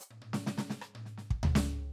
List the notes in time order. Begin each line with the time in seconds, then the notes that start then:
0.00 hi-hat pedal
0.11 high tom
0.22 high tom
0.33 snare
0.46 snare
0.58 snare
0.70 snare
0.82 cross-stick
0.95 high tom
1.05 snare
1.18 snare
1.30 kick
1.43 floor tom
1.55 snare